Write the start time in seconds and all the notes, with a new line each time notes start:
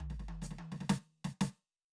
0.00 floor tom
0.10 snare
0.19 snare
0.28 high tom
0.42 snare, hi-hat pedal
0.51 snare
0.58 high tom
0.72 snare
0.80 snare
0.88 snare, hi-hat pedal
1.24 snare
1.41 snare, hi-hat pedal